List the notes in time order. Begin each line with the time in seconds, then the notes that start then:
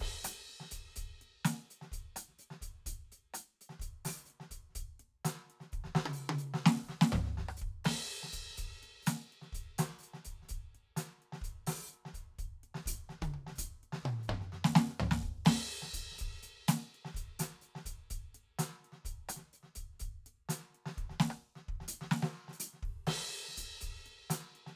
0.01 kick, crash
0.08 kick
0.10 kick
0.25 closed hi-hat, cross-stick
0.50 closed hi-hat
0.60 snare
0.72 closed hi-hat, kick
0.90 snare
0.96 closed hi-hat, kick
1.22 closed hi-hat
1.45 closed hi-hat, snare
1.71 closed hi-hat
1.82 snare
1.92 closed hi-hat, kick
2.16 closed hi-hat, cross-stick
2.29 snare
2.39 closed hi-hat, hi-hat pedal
2.51 snare
2.62 closed hi-hat, kick
2.76 snare
2.86 closed hi-hat, kick
2.92 kick
3.12 closed hi-hat
3.34 closed hi-hat, cross-stick
3.61 closed hi-hat
3.70 snare
3.80 closed hi-hat, kick, snare
4.05 open hi-hat, snare
4.26 hi-hat pedal
4.30 closed hi-hat
4.40 snare
4.51 closed hi-hat, kick
4.70 snare
4.76 closed hi-hat, kick
4.81 kick
5.00 closed hi-hat
5.25 closed hi-hat, snare
5.34 snare
5.50 closed hi-hat
5.61 snare
5.73 kick, closed hi-hat, hi-hat pedal
5.82 kick, snare
5.94 kick, snare
6.06 high tom
6.13 hi-hat pedal
6.19 snare
6.30 high tom
6.39 hi-hat pedal
6.54 snare
6.66 snare
6.76 snare
6.83 kick, hi-hat pedal
6.89 snare
7.02 snare, hi-hat pedal
7.13 kick, floor tom
7.25 snare
7.38 kick, snare
7.49 cross-stick
7.57 hi-hat pedal
7.62 kick
7.69 kick
7.85 snare, crash
8.02 hi-hat pedal
8.10 closed hi-hat
8.24 snare
8.33 closed hi-hat, kick
8.50 snare
8.58 closed hi-hat, kick
8.65 kick
8.83 closed hi-hat
9.03 hi-hat pedal
9.07 closed hi-hat, snare
9.25 hi-hat pedal
9.33 closed hi-hat
9.42 snare
9.53 closed hi-hat, kick
9.79 closed hi-hat, snare
9.99 hi-hat pedal
10.03 closed hi-hat
10.14 snare
10.23 closed hi-hat, kick, snare
10.43 snare
10.49 closed hi-hat, kick, snare
10.55 kick, snare
10.57 snare
10.75 closed hi-hat
10.97 closed hi-hat, snare
11.22 closed hi-hat
11.33 snare
11.42 closed hi-hat, kick
11.48 kick
11.67 open hi-hat, snare
11.88 hi-hat pedal
11.94 closed hi-hat
12.06 snare
12.14 closed hi-hat, kick
12.33 snare
12.39 closed hi-hat, kick
12.64 closed hi-hat
12.75 snare
12.86 closed hi-hat, kick
12.93 kick
13.10 snare
13.22 kick, hi-hat pedal, high tom
13.28 kick
13.34 high tom
13.47 snare
13.56 closed hi-hat, kick, hi-hat pedal
13.84 open hi-hat
13.93 snare
14.02 kick, mid tom
14.19 snare
14.23 hi-hat pedal
14.29 kick, mid tom
14.41 snare
14.53 snare
14.65 snare
14.72 kick, snare
14.88 snare
15.00 floor tom
15.12 snare
15.23 kick
15.31 kick
15.46 snare, crash
15.69 closed hi-hat
15.83 snare
15.93 closed hi-hat, kick, hi-hat pedal
16.12 snare
16.19 closed hi-hat, kick
16.28 kick, snare
16.43 closed hi-hat
16.69 closed hi-hat, snare
16.95 closed hi-hat
17.05 snare
17.15 closed hi-hat, kick
17.40 closed hi-hat, snare
17.62 closed hi-hat, hi-hat pedal
17.76 snare
17.86 closed hi-hat, kick
18.11 closed hi-hat, kick
18.17 kick
18.35 closed hi-hat
18.59 closed hi-hat, snare
18.85 closed hi-hat
18.93 snare
19.05 closed hi-hat, kick
19.13 kick
19.29 closed hi-hat, cross-stick
19.37 snare
19.53 hi-hat pedal
19.63 snare
19.76 closed hi-hat, kick
19.93 snare
20.00 closed hi-hat, kick
20.26 closed hi-hat
20.49 closed hi-hat, snare
20.75 closed hi-hat
20.86 snare
20.98 kick, closed hi-hat
21.10 snare
21.20 snare
21.31 cross-stick
21.56 snare
21.69 kick
21.75 kick
21.81 snare
21.88 closed hi-hat
22.01 snare
22.12 snare
22.23 snare
22.48 snare
22.53 hi-hat pedal
22.60 closed hi-hat
22.74 snare
22.83 kick, crash
22.92 kick
23.07 snare, crash
23.49 snare
23.58 closed hi-hat, kick
23.81 closed hi-hat, kick
23.95 snare
24.06 closed hi-hat
24.30 closed hi-hat, snare
24.56 closed hi-hat
24.67 snare